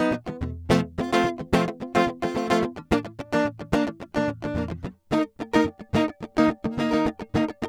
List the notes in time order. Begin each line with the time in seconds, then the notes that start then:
0.00 F#3 B3 D#4
0.28 B3
0.43 A3
0.71 F3 A3 C4
0.99 A3 C4 F4
1.14 A3 C4 F4
1.54 F3 A3 C4 F4
1.96 A3 C4 F4
2.23 A3 C4 F4
2.36 F3 A3 C4 F4
2.52 F3 A3 C4 F4
2.64 F3
2.92 E3 A#3 D4
3.34 A#3 D4
3.74 A#3 D4
4.17 A#3 D4
4.44 A#3 D4
4.58 A#3
5.13 A#3 D#4 A#4
5.54 A#3 D#4 A#4
5.95 A#3 D#4 A#4
6.39 A#3 D#4
6.65 A#3 D#4
6.80 A#3 D#4 A#4
6.93 A#3 D#4 A#4
7.36 A#3 D#4